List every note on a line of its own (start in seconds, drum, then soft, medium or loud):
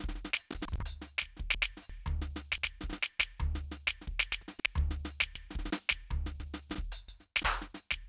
0.01 kick soft
0.01 snare soft
0.09 snare soft
0.16 snare soft
0.25 snare soft
0.34 snare medium
0.34 hi-hat pedal soft
0.51 kick soft
0.51 snare medium
0.69 floor tom medium
0.74 kick soft
0.86 closed hi-hat medium
1.02 snare soft
1.02 hi-hat pedal soft
1.19 kick soft
1.19 snare medium
1.23 snare soft
1.37 kick soft
1.37 snare soft
1.51 snare medium
1.66 snare soft
1.71 hi-hat pedal medium
1.83 snare loud
1.88 kick soft
2.07 kick soft
2.07 floor tom medium
2.22 snare soft
2.37 snare soft
2.37 hi-hat pedal soft
2.53 kick soft
2.53 snare medium
2.70 kick soft
2.70 snare soft
2.79 snare soft
2.85 snare soft
2.93 snare medium
3.03 snare medium
3.03 hi-hat pedal soft
3.20 kick soft
3.20 snare loud
3.40 kick soft
3.40 floor tom medium
3.56 snare soft
3.72 snare soft
3.72 hi-hat pedal soft
3.88 kick soft
3.88 snare medium
4.02 snare soft
4.08 kick soft
4.20 snare medium
4.37 snare soft
4.41 hi-hat pedal soft
4.54 kick soft
4.54 snare loud
4.60 snare soft
4.76 kick soft
4.76 floor tom loud
4.91 snare soft
5.06 snare soft
5.06 hi-hat pedal soft
5.21 kick soft
5.21 snare loud
5.40 snare soft
5.44 kick soft
5.44 snare soft
5.55 snare soft
5.63 snare soft
5.73 snare medium
5.73 hi-hat pedal medium
5.90 kick soft
5.90 snare loud
6.11 kick soft
6.11 floor tom medium
6.27 snare soft
6.43 snare soft
6.43 hi-hat pedal soft
6.59 kick soft
6.59 snare medium
6.76 kick soft
6.76 snare soft
6.93 open hi-hat medium
7.09 snare soft
7.09 hi-hat pedal soft
7.25 kick soft
7.25 snare medium
7.31 snare soft
7.45 kick soft
7.45 percussion medium
7.62 snare soft
7.75 snare soft
7.75 hi-hat pedal medium
7.91 kick soft
7.91 snare medium